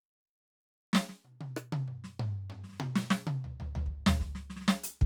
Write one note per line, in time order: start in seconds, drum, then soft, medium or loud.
0.93 snare loud
0.95 snare loud
1.09 snare soft
1.24 high tom soft
1.41 high tom medium
1.56 cross-stick medium
1.72 high tom loud
1.88 mid tom soft
2.04 snare medium
2.19 mid tom loud
2.50 mid tom medium
2.63 snare soft
2.69 snare soft
2.72 snare soft
2.75 snare soft
2.80 high tom loud
2.95 snare loud
3.10 snare loud
3.27 high tom loud
3.44 floor tom medium
3.60 floor tom medium
3.75 floor tom loud
3.86 kick soft
4.06 snare loud
4.06 floor tom loud
4.19 kick medium
4.19 snare soft
4.35 snare medium
4.50 snare medium
4.56 snare medium
4.61 snare soft
4.65 snare soft
4.68 snare loud
4.83 closed hi-hat loud
5.01 kick loud